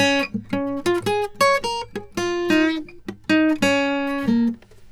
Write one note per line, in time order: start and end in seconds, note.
0.00 0.30 C#4
0.54 0.84 C#4
0.87 1.03 F4
1.07 1.31 G#4
1.42 1.61 C#5
1.65 1.86 A#4
1.97 2.12 G#4
2.18 2.70 F4
2.51 2.83 D#4
3.30 3.58 D#4
3.63 4.38 C#4
4.29 4.57 A#3